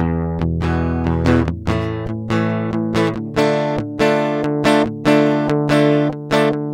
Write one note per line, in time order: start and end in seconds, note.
0.00 0.43 E2
0.42 0.63 E2
0.42 0.64 B2
0.63 1.09 E2
0.63 1.10 B2
0.63 1.13 E3
0.68 1.11 B3
1.09 1.28 E2
1.09 1.29 B2
1.28 1.50 E2
1.28 1.42 B2
1.28 1.48 E3
1.28 1.50 G3
1.32 1.51 B3
1.43 1.71 A2
1.50 1.69 F2
1.70 2.69 E2
1.70 2.10 A2
1.70 2.08 E3
1.74 2.10 A3
2.09 2.32 A2
2.09 2.34 E3
2.33 2.74 A2
2.33 2.75 E3
2.33 2.97 A3
2.75 2.96 A2
2.75 2.98 E3
2.97 3.16 A2
2.97 3.16 E3
2.97 3.09 A3
3.10 3.16 G#3
3.19 3.33 A2
3.19 3.37 D3
3.39 3.81 D3
3.39 3.80 A3
3.39 3.83 D4
3.39 3.81 F4
3.81 3.94 A2
3.81 4.01 D3
3.81 4.01 A3
4.02 4.46 D3
4.02 4.46 A3
4.02 4.47 D4
4.02 4.46 F4
4.46 4.66 D3
4.46 4.67 A3
4.66 4.87 D3
4.66 4.88 A3
4.66 4.88 D4
4.66 4.89 F4
4.88 5.01 A2
4.88 5.08 D3
5.08 5.51 D3
5.08 5.50 A3
5.08 5.55 D4
5.08 5.52 F4
5.50 5.72 D3
5.50 5.71 A3
5.72 6.13 D3
5.72 6.11 A3
5.72 6.14 D4
5.72 6.13 F4
6.12 6.33 D3
6.12 6.19 A3
6.33 6.54 D3
6.33 6.51 A3
6.33 6.54 D4
6.33 6.55 F4
6.51 6.74 A3
6.56 6.74 D3